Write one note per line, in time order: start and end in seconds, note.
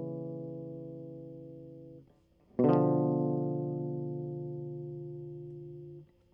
2.60 6.05 B2
2.65 6.06 D3
2.69 6.02 F3